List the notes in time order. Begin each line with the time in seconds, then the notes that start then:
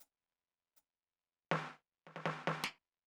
0.00 hi-hat pedal
0.76 hi-hat pedal
1.51 snare
2.07 snare
2.16 snare
2.25 snare
2.47 snare
2.64 snare